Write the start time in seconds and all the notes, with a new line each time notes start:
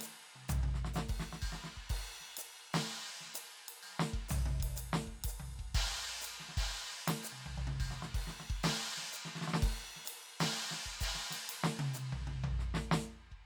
0.01 hi-hat pedal, ride
0.36 high tom
0.49 floor tom, hi-hat pedal
0.63 high tom
0.74 snare
0.85 snare
0.94 snare, hi-hat pedal
1.09 kick, crash
1.20 snare
1.33 snare
1.42 kick, ride
1.52 snare
1.64 snare
1.77 kick
1.90 kick, crash
2.21 snare
2.37 hi-hat pedal, ride
2.74 snare, ride
2.89 ride
3.21 snare
3.24 snare
3.27 snare
3.34 hi-hat pedal, ride
3.68 ride
3.76 hi-hat pedal
3.83 ride
4.00 snare
4.14 kick
4.29 floor tom, hi-hat pedal
4.46 high tom
4.60 kick, ride
4.76 hi-hat pedal, ride
4.93 snare
5.07 kick
5.24 kick, hi-hat pedal, ride
5.40 floor tom
5.59 kick
5.75 kick, ride
6.21 hi-hat pedal, ride
6.40 snare
6.49 snare
6.57 kick, ride
6.73 ride
7.08 snare, ride
7.23 hi-hat pedal, ride
7.33 high tom
7.46 floor tom
7.58 floor tom
7.67 high tom
7.80 kick, ride
7.91 snare
8.02 snare
8.14 kick, crash
8.27 snare
8.40 snare
8.50 kick
8.63 snare, ride
8.97 snare
9.03 snare
9.13 hi-hat pedal
9.25 snare
9.35 snare
9.41 snare
9.48 snare
9.54 snare
9.62 kick, crash
9.96 snare
10.05 hi-hat pedal, ride
10.40 snare, ride
10.55 ride
10.71 snare
10.86 kick
11.00 kick, hi-hat pedal, ride
11.15 snare
11.31 snare, ride
11.49 ride
11.64 snare
11.79 high tom
11.94 hi-hat pedal, high tom
12.12 floor tom
12.27 high tom
12.44 floor tom
12.59 snare
12.74 snare
12.92 snare
13.32 kick